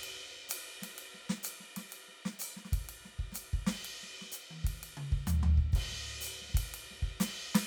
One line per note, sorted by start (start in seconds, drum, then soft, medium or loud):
0.01 hi-hat pedal soft
0.01 ride medium
0.49 hi-hat pedal loud
0.49 ride loud
0.82 snare soft
0.82 ride medium
0.94 hi-hat pedal soft
0.98 ride medium
1.14 snare soft
1.30 snare medium
1.43 hi-hat pedal loud
1.43 ride medium
1.60 snare soft
1.77 snare soft
1.77 ride medium
1.89 hi-hat pedal soft
1.89 ride medium
2.08 snare soft
2.26 snare medium
2.40 hi-hat pedal loud
2.40 ride medium
2.57 snare soft
2.65 snare soft
2.73 kick soft
2.73 ride medium
2.83 hi-hat pedal soft
2.89 ride medium
3.05 snare soft
3.19 kick soft
3.32 snare soft
3.32 hi-hat pedal medium
3.32 ride medium
3.54 kick soft
3.67 snare medium
3.67 ride medium
3.79 hi-hat pedal soft
3.85 ride medium
4.03 snare soft
4.22 snare soft
4.32 hi-hat pedal medium
4.36 ride soft
4.51 high tom soft
4.65 kick soft
4.65 ride medium
4.76 hi-hat pedal soft
4.83 ride medium
4.97 mid tom medium
5.12 kick soft
5.27 floor tom medium
5.27 hi-hat pedal medium
5.43 floor tom medium
5.58 kick soft
5.72 kick medium
5.72 hi-hat pedal soft
5.72 ride medium
5.92 snare soft
6.21 hi-hat pedal medium
6.27 ride medium
6.42 snare soft
6.49 snare soft
6.55 kick soft
6.55 ride medium
6.67 hi-hat pedal soft
6.74 ride medium
6.91 snare soft
7.03 kick soft
7.21 snare medium
7.21 hi-hat pedal loud
7.21 ride medium
7.55 snare medium
7.55 ride loud